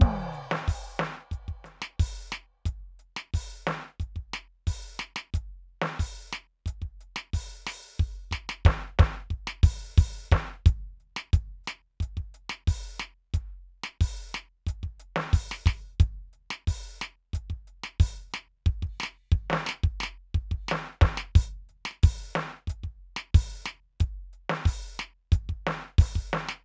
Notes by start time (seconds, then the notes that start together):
0.01 kick, crash
0.32 closed hi-hat, hi-hat pedal
0.36 kick
0.51 snare
0.68 open hi-hat, kick
0.99 closed hi-hat, snare, hi-hat pedal
1.31 closed hi-hat, kick
1.48 kick
1.64 closed hi-hat, snare, hi-hat pedal
1.82 snare
2.00 open hi-hat, kick
2.30 closed hi-hat, snare, hi-hat pedal
2.66 closed hi-hat, kick
2.99 closed hi-hat
3.17 snare
3.34 open hi-hat, kick
3.65 closed hi-hat, snare, hi-hat pedal
4.00 closed hi-hat, kick
4.16 kick
4.33 closed hi-hat, snare
4.67 open hi-hat, kick
4.97 snare, hi-hat pedal
5.16 snare
5.34 closed hi-hat, kick
5.82 snare
5.99 open hi-hat, kick
6.31 closed hi-hat, snare, hi-hat pedal
6.66 closed hi-hat, kick
6.82 kick
7.01 closed hi-hat
7.16 snare
7.33 open hi-hat, kick
7.67 open hi-hat, snare
7.99 kick
8.31 kick, snare, hi-hat pedal
8.49 snare
8.65 kick, snare
8.99 kick, snare
9.30 kick, hi-hat pedal
9.47 snare
9.63 open hi-hat, kick
9.98 open hi-hat, kick
10.27 hi-hat pedal
10.32 kick, snare
10.66 closed hi-hat, kick
11.00 closed hi-hat
11.16 snare
11.33 closed hi-hat, kick
11.64 snare, hi-hat pedal
11.68 closed hi-hat
12.00 closed hi-hat, kick
12.17 kick
12.34 closed hi-hat
12.49 snare
12.68 open hi-hat, kick
12.99 snare, hi-hat pedal
13.34 closed hi-hat, kick, snare
13.84 snare
14.01 open hi-hat, kick
14.33 closed hi-hat, snare, hi-hat pedal
14.67 closed hi-hat, kick
14.83 kick
15.00 closed hi-hat
15.16 snare
15.33 open hi-hat, kick
15.51 snare
15.66 kick, snare
15.93 hi-hat pedal
16.00 closed hi-hat, kick
16.33 closed hi-hat
16.50 snare
16.67 open hi-hat, kick
17.00 closed hi-hat, snare, hi-hat pedal
17.33 closed hi-hat, kick
17.50 kick
17.67 closed hi-hat
17.84 snare
18.00 open hi-hat, kick
18.30 kick, snare, hi-hat pedal
18.66 kick
18.83 kick
18.87 crash, ride
19.00 snare
19.03 snare
19.32 kick
19.50 snare
19.53 snare
19.67 snare
19.69 snare
19.84 kick, snare
20.00 snare
20.03 snare
20.34 kick
20.51 kick
20.55 crash
20.68 snare
20.71 snare
21.01 kick, snare
21.17 snare
21.35 open hi-hat, kick
21.69 closed hi-hat, kick
21.85 snare
21.91 snare
22.03 open hi-hat, kick
22.35 snare, hi-hat pedal
22.67 closed hi-hat, kick
22.84 kick
23.16 snare
23.34 open hi-hat, kick
23.65 snare, hi-hat pedal
24.00 closed hi-hat, kick
24.33 closed hi-hat
24.50 snare
24.65 open hi-hat, kick
24.97 snare, hi-hat pedal
25.32 closed hi-hat, kick
25.49 kick
25.67 snare
25.98 open hi-hat, kick, snare
26.15 kick
26.30 snare, hi-hat pedal
26.49 snare